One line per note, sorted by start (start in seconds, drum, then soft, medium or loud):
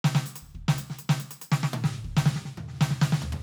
0.04 snare loud
0.15 snare loud
0.26 percussion loud
0.36 percussion loud
0.42 kick soft
0.55 kick soft
0.68 snare loud
0.78 percussion loud
0.90 snare medium
0.99 percussion loud
1.09 snare loud
1.20 percussion loud
1.31 percussion loud
1.42 percussion loud
1.52 snare loud
1.63 snare loud
1.73 high tom loud
1.84 snare loud
1.93 kick soft
2.04 kick medium
2.17 snare loud
2.26 snare loud
2.45 snare medium
2.58 mid tom medium
2.68 snare soft
2.73 snare soft
2.81 snare loud
2.91 snare medium
3.02 snare loud
3.12 snare loud
3.22 floor tom loud
3.32 floor tom loud